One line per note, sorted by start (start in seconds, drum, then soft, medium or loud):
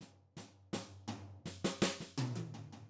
0.01 snare soft
0.01 floor tom soft
0.37 snare soft
0.37 floor tom medium
0.73 snare medium
0.73 floor tom medium
1.08 floor tom loud
1.46 snare medium
1.64 snare loud
1.82 snare loud
2.00 snare medium
2.18 mid tom loud
2.36 open hi-hat soft
2.36 high tom loud
2.54 floor tom medium
2.72 floor tom medium